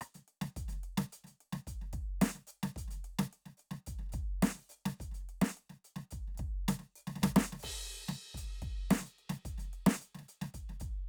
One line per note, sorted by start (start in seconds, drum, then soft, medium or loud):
0.01 closed hi-hat medium
0.01 cross-stick medium
0.15 closed hi-hat soft
0.15 snare soft
0.28 closed hi-hat soft
0.42 snare medium
0.57 closed hi-hat medium
0.57 kick soft
0.63 kick soft
0.69 closed hi-hat medium
0.69 snare soft
0.73 snare soft
0.84 closed hi-hat soft
0.98 snare loud
1.13 closed hi-hat medium
1.24 closed hi-hat soft
1.24 snare soft
1.28 snare soft
1.41 closed hi-hat soft
1.53 snare medium
1.67 closed hi-hat medium
1.67 kick soft
1.82 snare soft
1.91 kick soft
1.91 snare soft
1.91 closed hi-hat medium
2.02 kick soft
2.22 closed hi-hat loud
2.22 snare loud
2.35 snare soft
2.35 open hi-hat soft
2.47 hi-hat pedal medium
2.63 snare medium
2.76 closed hi-hat medium
2.76 kick soft
2.82 kick soft
2.88 closed hi-hat medium
2.88 snare soft
2.93 snare soft
3.05 closed hi-hat soft
3.19 snare loud
3.33 closed hi-hat soft
3.46 snare soft
3.58 closed hi-hat soft
3.58 hi-hat pedal soft
3.71 snare soft
3.87 closed hi-hat medium
3.87 kick soft
3.99 snare soft
4.06 snare soft
4.09 closed hi-hat medium
4.09 snare soft
4.14 kick soft
4.20 kick soft
4.23 kick soft
4.43 closed hi-hat loud
4.43 snare loud
4.55 open hi-hat soft
4.55 snare soft
4.69 closed hi-hat soft
4.69 hi-hat pedal medium
4.86 snare medium
4.99 closed hi-hat medium
4.99 kick soft
4.99 snare soft
5.12 closed hi-hat soft
5.12 snare soft
5.17 snare soft
5.21 snare soft
5.29 closed hi-hat soft
5.42 snare loud
5.57 closed hi-hat soft
5.70 snare soft
5.85 closed hi-hat soft
5.96 snare soft
6.11 closed hi-hat medium
6.11 kick soft
6.28 snare soft
6.35 snare soft
6.35 closed hi-hat medium
6.40 kick soft
6.48 kick soft
6.69 closed hi-hat medium
6.69 snare loud
6.79 snare soft
6.96 hi-hat pedal soft
6.96 open hi-hat medium
7.07 snare medium
7.16 snare soft
7.22 kick soft
7.22 snare loud
7.36 snare loud
7.53 snare medium
7.59 hi-hat pedal medium
7.59 crash loud
7.64 kick soft
8.09 snare medium
8.35 closed hi-hat medium
8.35 kick soft
8.40 kick soft
8.40 snare soft
8.62 kick soft
8.62 closed hi-hat soft
8.70 kick soft
8.91 closed hi-hat medium
8.91 snare loud
9.01 snare soft
9.06 closed hi-hat medium
9.19 closed hi-hat soft
9.30 snare medium
9.45 closed hi-hat medium
9.45 kick soft
9.51 kick soft
9.58 closed hi-hat soft
9.58 snare soft
9.64 snare soft
9.73 closed hi-hat soft
9.87 snare loud
9.94 snare soft
10.02 closed hi-hat medium
10.15 snare soft
10.19 snare soft
10.29 closed hi-hat medium
10.42 snare medium
10.54 closed hi-hat medium
10.54 kick soft
10.69 snare soft
10.76 snare soft
10.80 closed hi-hat medium
10.80 kick soft
10.89 kick soft